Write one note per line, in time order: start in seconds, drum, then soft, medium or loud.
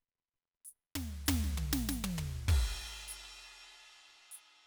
0.65 hi-hat pedal medium
0.95 snare medium
0.95 floor tom medium
1.26 snare medium
1.26 floor tom loud
1.26 hi-hat pedal medium
1.44 snare soft
1.57 mid tom medium
1.73 snare medium
1.89 snare medium
1.89 hi-hat pedal medium
2.04 high tom loud
2.18 floor tom medium
2.35 kick soft
2.48 kick medium
2.48 crash medium
3.08 hi-hat pedal medium
4.31 hi-hat pedal medium